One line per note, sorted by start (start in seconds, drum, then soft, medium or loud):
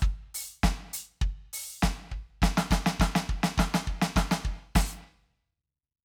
0.01 kick loud
0.01 hi-hat pedal medium
0.35 open hi-hat loud
0.64 kick loud
0.64 snare loud
0.64 hi-hat pedal soft
0.94 closed hi-hat loud
1.22 kick loud
1.54 open hi-hat loud
1.83 kick loud
1.83 snare loud
2.12 kick medium
2.43 kick loud
2.43 snare loud
2.43 hi-hat pedal soft
2.58 snare loud
2.71 kick loud
2.71 snare loud
2.71 hi-hat pedal medium
2.87 snare loud
3.00 kick loud
3.00 snare loud
3.16 snare loud
3.30 kick medium
3.44 snare loud
3.58 kick loud
3.58 snare loud
3.75 snare loud
3.88 kick medium
4.02 snare loud
4.17 kick loud
4.17 snare loud
4.32 snare loud
4.46 kick medium
4.46 snare soft
4.76 open hi-hat loud
4.76 kick loud
4.76 snare loud
4.90 hi-hat pedal medium